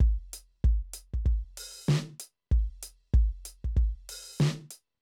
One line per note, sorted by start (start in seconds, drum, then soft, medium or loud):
0.01 kick medium
0.01 crash soft
0.34 closed hi-hat loud
0.65 kick medium
0.94 closed hi-hat loud
1.14 kick soft
1.26 kick medium
1.26 crash soft
1.58 open hi-hat loud
1.89 snare loud
1.89 hi-hat pedal medium
2.20 closed hi-hat loud
2.52 kick medium
2.52 crash soft
2.83 closed hi-hat loud
3.14 kick medium
3.14 crash soft
3.46 closed hi-hat loud
3.65 kick soft
3.77 kick medium
3.77 crash soft
4.10 open hi-hat loud
4.41 snare loud
4.41 hi-hat pedal medium
4.71 closed hi-hat loud